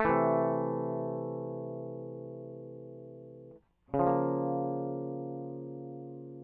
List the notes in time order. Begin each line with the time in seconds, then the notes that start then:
0.00 A3
0.06 E3
0.10 C3
3.95 C#3
4.00 F3
4.07 A#3